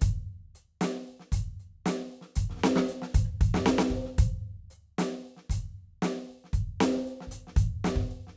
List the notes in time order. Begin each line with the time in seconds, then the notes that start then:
0.01 closed hi-hat, kick
0.55 closed hi-hat
0.81 closed hi-hat, snare
0.94 snare
1.06 closed hi-hat, kick
1.19 snare
1.32 closed hi-hat, kick
1.59 closed hi-hat
1.86 closed hi-hat, snare
2.11 closed hi-hat
2.21 snare
2.35 closed hi-hat, kick
2.49 snare
2.54 snare
2.57 snare, hi-hat pedal
2.63 snare
2.76 snare
2.88 closed hi-hat
3.02 snare
3.14 closed hi-hat, kick
3.25 cross-stick
3.41 open hi-hat, kick
3.54 snare
3.62 snare, hi-hat pedal
3.78 snare
3.90 kick, snare
4.05 snare
4.18 closed hi-hat, kick
4.70 hi-hat pedal
4.98 closed hi-hat, snare
5.37 snare
5.49 closed hi-hat, kick
5.77 closed hi-hat
6.02 closed hi-hat, snare
6.28 kick, closed hi-hat
6.44 snare
6.53 closed hi-hat, kick
6.80 closed hi-hat, snare
6.96 snare
7.07 closed hi-hat
7.20 snare
7.27 kick
7.31 closed hi-hat
7.47 snare
7.56 closed hi-hat, kick
7.84 closed hi-hat, snare
7.96 kick, snare
8.11 closed hi-hat
8.27 snare